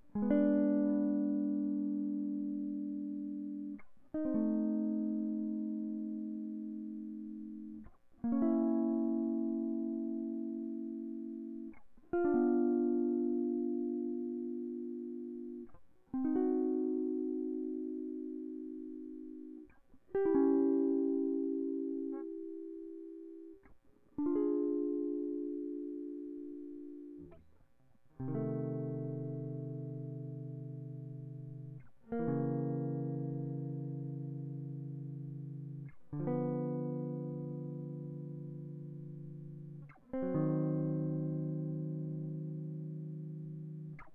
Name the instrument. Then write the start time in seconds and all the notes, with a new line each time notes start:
electric guitar
0.16 G#3
0.23 B3
0.31 D4
4.14 D#4
4.25 C4
4.35 A3
8.24 A#3
8.32 C#4
8.42 E4
12.13 F4
12.25 D4
12.34 B3
16.14 C4
16.25 D#4
16.36 F#4
20.15 G4
20.26 E4
20.35 C#4
24.19 D4
24.26 F4
24.36 G#4
28.21 C3
28.29 D#3
28.35 A3
32.12 A#3
32.20 E3
32.29 C#3
36.14 D3
36.20 F3
36.27 B3
40.14 C4
40.23 F#3
40.35 D#3